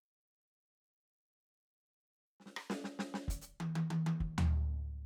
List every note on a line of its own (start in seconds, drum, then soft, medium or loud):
2.40 snare soft
2.46 snare soft
2.56 cross-stick medium
2.70 snare medium
2.84 snare medium
2.99 snare medium
3.14 snare medium
3.28 open hi-hat medium
3.28 kick medium
3.41 hi-hat pedal medium
3.60 high tom medium
3.75 high tom loud
3.90 high tom loud
4.06 high tom loud
4.20 kick medium
4.38 floor tom loud